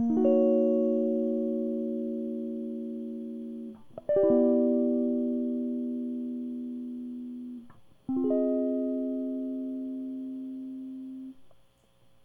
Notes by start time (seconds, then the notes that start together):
0.00 A#3
0.10 D#4
0.17 F#4
0.25 C#5
4.09 D5
4.16 G4
4.23 E4
4.30 B3
8.09 C4
8.17 F4
8.24 G#4
8.30 D#5